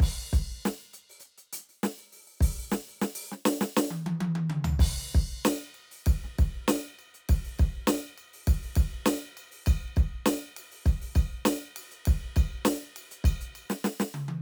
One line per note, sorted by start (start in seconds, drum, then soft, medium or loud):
0.01 kick loud
0.01 crash loud
0.19 open hi-hat soft
0.34 closed hi-hat medium
0.34 kick loud
0.51 closed hi-hat soft
0.66 snare loud
0.94 closed hi-hat medium
1.10 open hi-hat medium
1.21 hi-hat pedal medium
1.26 closed hi-hat soft
1.38 closed hi-hat medium
1.53 closed hi-hat loud
1.70 open hi-hat soft
1.84 snare loud
1.98 open hi-hat soft
2.13 open hi-hat medium
2.28 open hi-hat soft
2.41 open hi-hat loud
2.41 kick loud
2.59 open hi-hat soft
2.72 snare loud
2.88 open hi-hat medium
3.02 snare loud
3.16 open hi-hat loud
3.32 snare medium
3.46 snare loud
3.62 snare loud
3.77 snare loud
3.91 high tom medium
4.07 high tom loud
4.21 high tom loud
4.36 high tom loud
4.50 mid tom loud
4.65 floor tom loud
4.80 kick loud
4.80 crash loud
5.15 kick loud
5.46 snare loud
5.46 ride bell loud
5.75 ride medium
5.92 open hi-hat medium
6.07 kick loud
6.07 open hi-hat soft
6.07 ride loud
6.25 snare soft
6.39 kick loud
6.39 snare soft
6.39 ride medium
6.69 snare loud
6.69 ride bell loud
7.00 ride bell medium
7.15 closed hi-hat medium
7.29 kick loud
7.29 open hi-hat soft
7.29 ride loud
7.45 open hi-hat medium
7.59 kick loud
7.59 snare soft
7.59 ride bell medium
7.88 snare loud
7.88 ride bell loud
8.18 ride bell medium
8.34 open hi-hat medium
8.48 kick loud
8.48 ride loud
8.63 open hi-hat medium
8.76 kick loud
8.76 ride loud
9.06 snare loud
9.06 ride bell loud
9.38 ride bell medium
9.52 open hi-hat medium
9.67 kick loud
9.67 ride bell loud
9.97 kick loud
9.97 ride bell medium
10.27 snare loud
10.27 ride bell loud
10.57 ride loud
10.72 open hi-hat medium
10.86 kick loud
10.86 ride bell medium
11.02 open hi-hat medium
11.16 kick loud
11.16 ride bell loud
11.46 snare loud
11.46 ride bell loud
11.77 ride loud
11.92 closed hi-hat medium
12.06 kick loud
12.06 ride loud
12.37 kick loud
12.37 ride bell loud
12.66 snare loud
12.66 ride loud
12.97 ride loud
13.12 closed hi-hat medium
13.25 kick loud
13.25 ride bell loud
13.42 closed hi-hat medium
13.56 ride bell medium
13.71 snare loud
13.85 snare loud
14.01 snare loud
14.15 mid tom loud
14.29 high tom medium